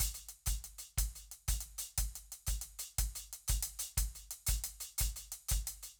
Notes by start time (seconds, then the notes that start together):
0.00 closed hi-hat, kick
0.14 closed hi-hat
0.29 closed hi-hat
0.46 closed hi-hat, kick
0.64 closed hi-hat
0.78 closed hi-hat
0.97 kick, closed hi-hat
1.15 closed hi-hat
1.31 closed hi-hat
1.48 closed hi-hat, kick
1.53 kick
1.61 closed hi-hat
1.78 closed hi-hat
1.98 kick, closed hi-hat
2.15 open hi-hat
2.32 closed hi-hat
2.47 closed hi-hat, kick
2.61 closed hi-hat
2.79 closed hi-hat
2.98 kick, closed hi-hat
3.15 closed hi-hat
3.33 closed hi-hat
3.48 closed hi-hat, kick
3.62 closed hi-hat
3.79 closed hi-hat
3.97 kick, closed hi-hat
4.15 closed hi-hat
4.31 closed hi-hat
4.47 closed hi-hat, kick
4.64 closed hi-hat
4.80 closed hi-hat
4.98 closed hi-hat, kick
5.16 closed hi-hat
5.32 closed hi-hat
5.49 closed hi-hat, kick
5.67 closed hi-hat
5.83 closed hi-hat